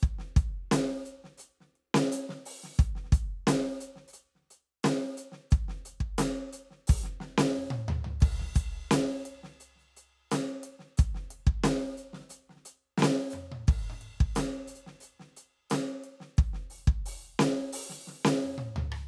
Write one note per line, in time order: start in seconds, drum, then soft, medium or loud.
0.01 closed hi-hat soft
0.01 kick loud
0.01 hi-hat pedal soft
0.19 snare soft
0.36 closed hi-hat medium
0.36 kick loud
0.71 closed hi-hat loud
0.71 snare loud
1.03 closed hi-hat medium
1.03 hi-hat pedal soft
1.24 snare soft
1.38 closed hi-hat medium
1.38 hi-hat pedal medium
1.61 snare soft
1.75 closed hi-hat soft
1.94 snare loud
2.12 closed hi-hat loud
2.29 snare medium
2.46 open hi-hat loud
2.63 snare soft
2.79 open hi-hat medium
2.79 kick loud
2.79 hi-hat pedal soft
2.95 snare soft
3.04 snare soft
3.12 closed hi-hat medium
3.12 kick loud
3.47 closed hi-hat loud
3.47 snare loud
3.72 hi-hat pedal soft
3.81 closed hi-hat medium
3.96 snare soft
4.08 hi-hat pedal medium
4.13 closed hi-hat medium
4.35 snare soft
4.41 snare soft
4.45 snare soft
4.50 closed hi-hat medium
4.83 closed hi-hat medium
4.83 snare loud
5.17 closed hi-hat medium
5.32 snare soft
5.51 closed hi-hat medium
5.51 kick loud
5.68 snare soft
5.85 closed hi-hat medium
6.00 kick medium
6.18 closed hi-hat loud
6.18 snare loud
6.53 closed hi-hat medium
6.71 snare soft
6.87 open hi-hat loud
6.87 kick loud
7.04 snare soft
7.20 snare medium
7.38 snare loud
7.38 hi-hat pedal soft
7.56 mid tom soft
7.70 high tom loud
7.88 floor tom loud
8.04 floor tom medium
8.21 kick loud
8.21 crash medium
8.39 floor tom medium
8.55 closed hi-hat medium
8.55 kick loud
8.91 closed hi-hat loud
8.91 snare loud
9.25 closed hi-hat medium
9.43 snare soft
9.60 closed hi-hat medium
9.76 snare soft
9.76 hi-hat pedal soft
9.81 snare soft
9.83 snare soft
9.97 closed hi-hat medium
10.31 closed hi-hat loud
10.31 snare loud
10.63 closed hi-hat medium
10.79 snare soft
10.97 closed hi-hat medium
10.97 kick loud
11.15 snare soft
11.31 closed hi-hat medium
11.47 kick loud
11.64 closed hi-hat medium
11.64 snare loud
11.97 closed hi-hat medium
12.13 snare soft
12.19 snare soft
12.29 closed hi-hat medium
12.29 snare soft
12.29 hi-hat pedal medium
12.49 snare soft
12.56 snare soft
12.65 closed hi-hat medium
12.98 snare loud
12.98 hi-hat pedal medium
13.02 snare loud
13.30 hi-hat pedal medium
13.30 mid tom medium
13.52 high tom medium
13.67 kick loud
13.67 crash medium
13.90 high tom soft
14.01 closed hi-hat soft
14.20 kick loud
14.35 closed hi-hat loud
14.35 snare medium
14.68 closed hi-hat medium
14.75 closed hi-hat soft
14.87 snare soft
15.00 closed hi-hat medium
15.00 hi-hat pedal medium
15.20 snare soft
15.31 snare soft
15.37 closed hi-hat medium
15.70 closed hi-hat loud
15.70 snare loud
16.04 closed hi-hat soft
16.17 snare soft
16.17 closed hi-hat soft
16.37 kick loud
16.37 open hi-hat soft
16.53 snare soft
16.70 open hi-hat medium
16.87 kick loud
17.06 open hi-hat loud
17.39 snare loud
17.73 open hi-hat loud
17.90 snare soft
18.07 snare soft
18.25 snare loud
18.44 mid tom soft
18.58 high tom loud
18.76 floor tom loud
18.92 cross-stick medium